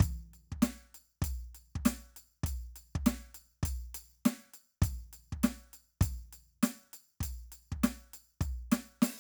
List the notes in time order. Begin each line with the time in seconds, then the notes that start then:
0.01 kick, percussion
0.34 percussion
0.53 kick
0.63 snare, percussion
0.95 percussion
1.23 kick, percussion
1.55 percussion
1.76 kick
1.86 snare, percussion
2.17 percussion
2.44 kick, percussion
2.77 percussion
2.96 kick
3.07 snare, percussion
3.35 percussion
3.64 kick, percussion
3.95 percussion
4.26 snare, percussion
4.54 percussion
4.83 kick, percussion
5.14 percussion
5.33 kick
5.44 snare, percussion
5.74 percussion
6.02 kick, percussion
6.33 percussion
6.64 snare, percussion
6.94 percussion
7.21 kick, percussion
7.53 percussion
7.73 kick
7.84 snare, percussion
8.14 percussion
8.42 kick, percussion
8.72 snare, percussion
9.03 snare, percussion